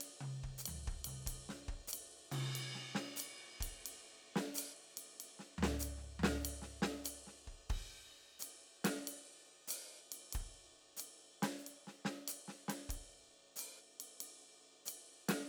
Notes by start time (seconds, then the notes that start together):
0.01 ride
0.21 high tom
0.44 kick
0.58 hi-hat pedal
0.66 floor tom, ride
0.87 kick
1.05 high tom, ride
1.26 kick, ride
1.49 snare
1.68 kick
1.88 hi-hat pedal
1.93 ride
2.32 high tom, ride
2.56 ride
2.75 snare
2.95 snare
3.16 hi-hat pedal, ride
3.61 kick, ride
3.86 ride
4.36 snare
4.55 hi-hat pedal, ride
4.97 ride
5.20 ride
5.39 snare
5.58 floor tom
5.63 snare
5.80 hi-hat pedal, ride
5.98 snare
6.19 floor tom
6.24 snare
6.41 hi-hat pedal, ride
6.62 snare
6.82 snare
7.05 hi-hat pedal, ride
7.27 snare
7.47 kick
7.70 kick, crash
8.40 hi-hat pedal, ride
8.85 snare, ride
9.07 ride
9.68 hi-hat pedal, ride
10.12 ride
10.33 kick, ride
10.97 hi-hat pedal, ride
11.42 snare, ride
11.59 hi-hat pedal
11.67 ride
11.87 snare
12.05 snare
12.28 hi-hat pedal, ride
12.48 snare
12.68 snare, ride
12.89 kick, ride
13.56 hi-hat pedal, ride
14.00 ride
14.21 ride
14.86 hi-hat pedal, ride
15.29 snare, ride